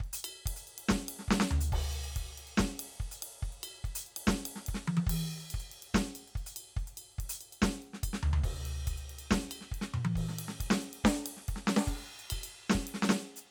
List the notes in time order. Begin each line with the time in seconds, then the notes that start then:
0.01 kick, ride
0.14 closed hi-hat
0.25 ride bell
0.46 kick, ride
0.57 closed hi-hat
0.68 ride bell
0.79 ride
0.89 kick, snare
1.09 ride
1.20 snare
1.29 kick, snare
1.41 snare
1.51 floor tom
1.61 closed hi-hat
1.73 kick, crash
1.94 ride
2.05 closed hi-hat
2.17 kick, ride
2.28 closed hi-hat
2.38 ride
2.48 ride bell
2.58 kick, snare
2.80 ride
2.94 closed hi-hat
3.01 kick, ride
3.12 closed hi-hat
3.23 ride
3.33 closed hi-hat
3.43 kick, ride
3.53 closed hi-hat
3.64 ride bell
3.76 closed hi-hat
3.85 kick, ride
3.96 closed hi-hat
4.07 ride bell
4.17 ride
4.28 kick, snare
4.46 ride
4.56 snare
4.67 kick, ride
4.75 snare
4.88 high tom
4.98 high tom
5.07 kick, crash
5.20 closed hi-hat
5.32 ride
5.41 closed hi-hat
5.51 kick, ride bell
5.61 closed hi-hat
5.72 ride
5.83 ride
5.95 kick, snare
6.16 ride bell
6.28 closed hi-hat
6.36 kick, ride bell
6.47 closed hi-hat
6.57 ride bell
6.77 kick, ride
6.88 closed hi-hat
6.98 ride bell
7.12 closed hi-hat
7.19 kick, ride
7.30 closed hi-hat
7.41 ride bell
7.53 ride bell
7.62 kick, snare
7.83 snare, ride
7.94 snare
8.04 kick, ride bell
8.14 snare
8.23 floor tom
8.34 floor tom
8.44 kick, crash
8.56 closed hi-hat
8.66 ride
8.76 closed hi-hat
8.88 kick, ride bell
8.98 closed hi-hat
9.10 ride
9.19 ride bell
9.31 kick, snare
9.52 ride bell
9.62 snare
9.72 kick, ride
9.82 snare
9.94 mid tom
10.05 high tom
10.16 kick, crash
10.29 snare
10.39 ride
10.49 snare
10.61 kick, ride
10.71 snare
10.83 ride
10.94 ride
11.05 kick, snare
11.26 ride
11.37 snare
11.49 kick, ride
11.57 snare
11.68 snare
11.77 snare
11.88 kick, crash
12.01 closed hi-hat
12.20 closed hi-hat
12.31 kick, ride bell
12.44 ride bell
12.70 snare
12.75 kick
12.88 ride
12.95 snare
13.03 snare
13.10 snare
13.37 hi-hat pedal